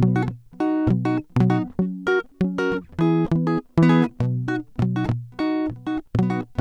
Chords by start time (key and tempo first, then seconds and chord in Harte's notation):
B major, 200 BPM
0.00 B:maj
1.80 F#:maj
3.00 E:maj
4.21 B:maj